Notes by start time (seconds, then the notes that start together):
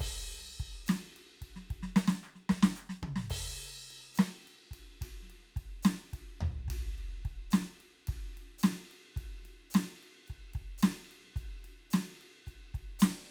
0.01 kick, crash
0.08 kick
0.41 snare
0.46 snare
0.49 snare
0.52 snare
0.55 snare
0.61 kick, ride
0.87 snare, hi-hat pedal, ride
1.18 ride
1.43 kick, ride
1.57 snare
1.71 kick, ride
1.84 snare
1.97 snare, hi-hat pedal
2.09 snare
2.22 percussion, hi-hat pedal
2.36 snare
2.51 kick, snare
2.64 snare
2.77 percussion, hi-hat pedal
2.90 snare
3.04 kick, high tom
3.17 snare
3.31 kick, crash
3.38 kick
3.92 ride
4.16 hi-hat pedal, ride
4.20 snare
4.30 snare
4.43 hi-hat pedal
4.49 ride
4.72 kick, ride
5.02 kick, ride
5.08 kick
5.23 snare
5.28 snare, ride
5.40 snare
5.57 kick, cross-stick, ride
5.65 kick
5.84 snare, hi-hat pedal, ride
5.95 snare
6.11 kick, hi-hat pedal, ride
6.22 snare
6.42 kick, floor tom
6.69 kick, ride
6.75 kick
6.99 ride
7.19 snare
7.26 kick, ride
7.52 snare, hi-hat pedal, ride
7.62 snare
7.82 ride
7.86 snare
7.92 snare
8.09 kick, ride
8.17 kick
8.38 ride
8.60 hi-hat pedal
8.64 snare, ride
8.74 snare
8.93 snare, ride
9.00 snare
9.18 kick, ride
9.24 kick
9.43 snare, ride
9.72 hi-hat pedal, ride
9.76 snare
10.04 ride
10.27 kick, hi-hat pedal, ride
10.55 kick, ride
10.62 kick
10.79 hi-hat pedal
10.84 snare, ride
10.92 snare
11.06 hi-hat pedal
11.12 ride
11.25 snare
11.29 snare
11.37 kick, hi-hat pedal, ride
11.44 kick
11.66 ride
11.92 snare, hi-hat pedal, ride
12.22 ride
12.47 kick, hi-hat pedal, ride
12.75 kick, ride
13.00 snare, hi-hat pedal, ride
13.27 snare